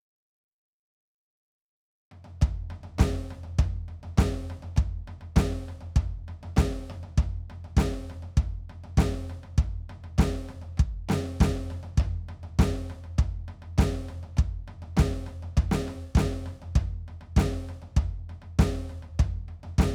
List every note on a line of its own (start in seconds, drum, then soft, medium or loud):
2.12 mid tom medium
2.25 mid tom medium
2.42 kick loud
2.42 mid tom loud
2.70 mid tom medium
2.83 mid tom medium
2.99 kick loud
2.99 snare loud
2.99 mid tom loud
3.31 mid tom medium
3.44 mid tom medium
3.59 kick loud
3.59 mid tom loud
3.88 mid tom medium
4.03 mid tom medium
4.18 kick loud
4.18 snare loud
4.18 mid tom loud
4.50 mid tom medium
4.63 mid tom medium
4.77 kick loud
4.77 mid tom loud
5.08 mid tom medium
5.21 mid tom medium
5.36 kick loud
5.36 snare loud
5.36 mid tom loud
5.69 mid tom medium
5.81 mid tom medium
5.96 kick loud
5.96 mid tom loud
6.28 mid tom medium
6.43 mid tom medium
6.57 kick loud
6.57 snare loud
6.57 mid tom loud
6.90 mid tom medium
7.03 mid tom medium
7.18 kick loud
7.18 mid tom loud
7.50 mid tom medium
7.65 mid tom medium
7.77 kick loud
7.77 snare loud
7.77 mid tom loud
8.10 mid tom medium
8.23 mid tom medium
8.37 kick loud
8.37 mid tom medium
8.70 mid tom medium
8.84 mid tom medium
8.97 kick loud
8.97 snare loud
8.97 mid tom loud
9.30 mid tom medium
9.43 mid tom medium
9.58 kick loud
9.58 mid tom medium
9.90 mid tom medium
10.04 mid tom medium
10.18 kick loud
10.18 snare loud
10.18 mid tom loud
10.49 mid tom medium
10.62 mid tom medium
10.78 kick loud
10.78 mid tom medium
11.09 snare loud
11.09 mid tom loud
11.40 kick loud
11.40 snare loud
11.40 mid tom loud
11.70 mid tom medium
11.83 mid tom medium
11.98 kick loud
11.98 mid tom loud
12.29 mid tom medium
12.43 mid tom medium
12.59 kick loud
12.59 snare loud
12.59 mid tom loud
12.90 mid tom medium
13.04 mid tom soft
13.19 kick loud
13.19 mid tom loud
13.48 mid tom medium
13.62 mid tom medium
13.78 kick loud
13.78 snare loud
13.78 mid tom loud
14.09 mid tom medium
14.23 mid tom medium
14.37 kick loud
14.37 mid tom loud
14.68 mid tom medium
14.82 mid tom medium
14.97 kick loud
14.97 snare loud
14.97 mid tom loud
15.27 mid tom medium
15.43 mid tom medium
15.57 kick loud
15.57 mid tom loud
15.72 snare loud
15.88 mid tom medium
16.15 kick loud
16.15 snare loud
16.15 mid tom loud
16.46 mid tom medium
16.62 mid tom medium
16.76 kick loud
16.76 mid tom loud
17.08 mid tom medium
17.21 mid tom medium
17.37 kick loud
17.37 snare loud
17.37 mid tom loud
17.69 mid tom medium
17.82 mid tom medium
17.97 kick loud
17.97 mid tom loud
18.30 mid tom medium
18.42 mid tom medium
18.59 kick loud
18.59 snare loud
18.59 mid tom loud
18.90 mid tom medium
19.03 mid tom medium
19.19 kick loud
19.19 mid tom loud
19.48 mid tom soft
19.63 mid tom medium
19.78 kick loud
19.78 snare loud
19.78 mid tom loud